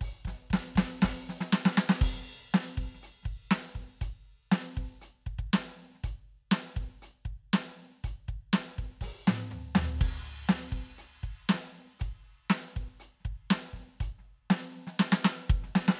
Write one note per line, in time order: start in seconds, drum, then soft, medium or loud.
0.01 open hi-hat loud
0.01 kick medium
0.25 open hi-hat soft
0.25 kick soft
0.25 snare soft
0.50 open hi-hat medium
0.50 kick soft
0.50 snare loud
0.76 open hi-hat medium
0.76 kick soft
0.76 snare loud
1.02 open hi-hat loud
1.02 kick medium
1.02 snare loud
1.29 snare medium
1.41 snare medium
1.53 snare loud
1.65 snare loud
1.77 snare loud
1.89 snare loud
2.01 kick loud
2.01 hi-hat pedal soft
2.01 crash loud
2.54 closed hi-hat loud
2.54 snare loud
2.77 closed hi-hat soft
2.77 kick medium
2.94 snare soft
3.03 closed hi-hat loud
3.23 closed hi-hat soft
3.23 kick soft
3.23 snare soft
3.51 closed hi-hat loud
3.51 snare loud
3.75 kick soft
3.75 closed hi-hat soft
4.01 closed hi-hat loud
4.01 kick medium
4.24 closed hi-hat soft
4.52 closed hi-hat loud
4.52 snare loud
4.77 kick medium
5.02 closed hi-hat loud
5.26 closed hi-hat soft
5.26 kick soft
5.39 kick soft
5.53 closed hi-hat loud
5.53 snare loud
5.80 closed hi-hat soft
5.95 snare soft
6.04 closed hi-hat loud
6.04 kick medium
6.51 closed hi-hat loud
6.51 snare loud
6.58 cross-stick soft
6.76 kick medium
6.76 closed hi-hat soft
7.02 closed hi-hat loud
7.25 kick soft
7.25 closed hi-hat soft
7.53 closed hi-hat loud
7.53 snare loud
7.79 closed hi-hat soft
8.04 closed hi-hat loud
8.04 kick soft
8.28 closed hi-hat soft
8.28 kick soft
8.53 closed hi-hat loud
8.53 snare loud
8.78 closed hi-hat soft
8.78 kick soft
9.01 open hi-hat loud
9.01 kick soft
9.01 snare soft
9.27 snare loud
9.27 hi-hat pedal soft
9.27 mid tom loud
9.50 floor tom medium
9.50 hi-hat pedal loud
9.75 snare loud
9.75 floor tom loud
9.98 kick medium
9.98 hi-hat pedal medium
9.98 crash medium
10.49 closed hi-hat loud
10.49 snare loud
10.72 kick medium
10.72 closed hi-hat soft
10.98 closed hi-hat loud
11.22 closed hi-hat soft
11.22 kick soft
11.49 closed hi-hat loud
11.49 snare loud
11.54 snare medium
11.73 closed hi-hat soft
12.00 closed hi-hat loud
12.00 kick medium
12.24 closed hi-hat soft
12.50 closed hi-hat loud
12.50 snare loud
12.75 kick soft
12.75 closed hi-hat soft
13.00 closed hi-hat loud
13.20 snare soft
13.25 kick soft
13.25 closed hi-hat soft
13.50 closed hi-hat loud
13.50 snare loud
13.73 closed hi-hat soft
13.73 kick soft
14.00 closed hi-hat loud
14.00 kick medium
14.19 snare soft
14.25 closed hi-hat soft
14.50 closed hi-hat loud
14.50 snare loud
14.72 closed hi-hat medium
14.87 snare medium
14.99 snare loud
15.12 snare loud
15.25 snare loud
15.50 kick loud
15.63 snare soft
15.75 snare loud
15.88 snare loud